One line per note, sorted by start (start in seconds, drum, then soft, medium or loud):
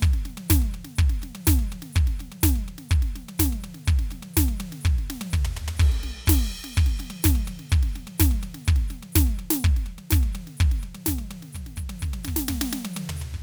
0.01 kick loud
0.01 hi-hat pedal medium
0.01 high tom medium
0.14 snare soft
0.23 snare soft
0.23 hi-hat pedal soft
0.23 high tom medium
0.37 high tom medium
0.48 kick loud
0.48 snare loud
0.48 hi-hat pedal loud
0.62 high tom medium
0.70 hi-hat pedal soft
0.70 high tom medium
0.85 snare medium
0.96 kick loud
0.96 hi-hat pedal medium
0.96 high tom medium
1.10 snare soft
1.19 hi-hat pedal soft
1.19 high tom medium
1.23 snare medium
1.35 high tom medium
1.45 kick loud
1.45 snare loud
1.45 hi-hat pedal medium
1.59 high tom medium
1.68 hi-hat pedal soft
1.72 high tom medium
1.82 snare medium
1.93 kick loud
1.93 hi-hat pedal medium
1.93 high tom medium
2.07 snare soft
2.15 hi-hat pedal soft
2.19 snare soft
2.19 high tom medium
2.32 high tom medium
2.41 kick loud
2.41 snare loud
2.41 hi-hat pedal medium
2.56 high tom medium
2.64 hi-hat pedal soft
2.68 high tom medium
2.78 snare medium
2.89 kick loud
2.89 hi-hat pedal medium
2.89 high tom soft
3.02 snare soft
3.12 hi-hat pedal soft
3.16 snare soft
3.16 high tom medium
3.29 high tom medium
3.38 kick loud
3.38 snare loud
3.38 hi-hat pedal medium
3.46 snare soft
3.52 high tom medium
3.61 hi-hat pedal medium
3.61 high tom medium
3.75 snare soft
3.85 kick loud
3.85 hi-hat pedal medium
3.85 high tom medium
3.99 snare soft
4.08 snare soft
4.08 hi-hat pedal soft
4.08 high tom medium
4.23 high tom medium
4.34 kick loud
4.34 snare loud
4.34 hi-hat pedal medium
4.48 high tom medium
4.56 hi-hat pedal soft
4.56 high tom loud
4.72 snare medium
4.81 hi-hat pedal medium
4.85 kick loud
4.85 high tom medium
4.98 snare soft
5.03 hi-hat pedal soft
5.10 snare medium
5.21 high tom loud
5.30 kick loud
5.30 floor tom medium
5.30 hi-hat pedal loud
5.45 floor tom loud
5.53 floor tom loud
5.53 hi-hat pedal soft
5.68 floor tom loud
5.77 kick loud
5.77 hi-hat pedal medium
5.81 ride medium
5.92 snare soft
6.00 snare medium
6.00 hi-hat pedal soft
6.26 kick loud
6.26 snare loud
6.26 hi-hat pedal medium
6.26 crash loud
6.49 hi-hat pedal soft
6.55 high tom soft
6.64 snare medium
6.74 kick loud
6.74 hi-hat pedal medium
6.74 high tom medium
6.86 snare medium
6.97 snare medium
6.97 hi-hat pedal medium
6.97 high tom medium
7.10 high tom medium
7.23 kick loud
7.23 snare loud
7.23 hi-hat pedal medium
7.35 high tom medium
7.45 hi-hat pedal medium
7.45 high tom medium
7.59 snare soft
7.70 kick loud
7.70 hi-hat pedal medium
7.70 high tom medium
7.83 snare soft
7.92 snare soft
7.92 hi-hat pedal soft
7.92 high tom medium
8.07 high tom medium
8.18 kick loud
8.18 snare loud
8.18 hi-hat pedal medium
8.31 high tom medium
8.41 hi-hat pedal medium
8.41 high tom medium
8.54 snare medium
8.65 kick loud
8.65 hi-hat pedal medium
8.65 high tom medium
8.76 snare soft
8.88 snare soft
8.88 hi-hat pedal medium
8.88 high tom medium
9.03 high tom medium
9.12 kick loud
9.12 snare loud
9.12 hi-hat pedal medium
9.27 high tom soft
9.34 hi-hat pedal soft
9.39 high tom medium
9.51 snare loud
9.59 hi-hat pedal loud
9.64 kick loud
9.77 snare soft
9.83 hi-hat pedal soft
9.83 high tom medium
9.98 high tom medium
10.10 kick loud
10.10 snare medium
10.10 hi-hat pedal medium
10.23 high tom medium
10.33 hi-hat pedal soft
10.33 high tom medium
10.47 snare soft
10.57 kick loud
10.57 hi-hat pedal medium
10.57 high tom medium
10.71 snare soft
10.79 hi-hat pedal medium
10.79 high tom medium
10.95 high tom medium
11.05 kick medium
11.05 snare loud
11.05 hi-hat pedal medium
11.19 high tom medium
11.26 hi-hat pedal soft
11.31 high tom medium
11.43 snare soft
11.53 kick soft
11.53 hi-hat pedal medium
11.53 high tom medium
11.66 snare soft
11.76 kick medium
11.76 hi-hat pedal loud
11.76 high tom medium
11.89 high tom medium
11.99 kick medium
11.99 hi-hat pedal loud
12.04 snare soft
12.13 high tom medium
12.24 snare medium
12.24 hi-hat pedal medium
12.28 kick medium
12.36 snare loud
12.47 kick medium
12.47 snare loud
12.47 hi-hat pedal medium
12.61 snare loud
12.70 snare loud
12.70 hi-hat pedal loud
12.85 high tom loud
12.93 hi-hat pedal loud
12.93 high tom loud
13.09 floor tom loud
13.17 hi-hat pedal medium
13.21 floor tom medium
13.34 kick medium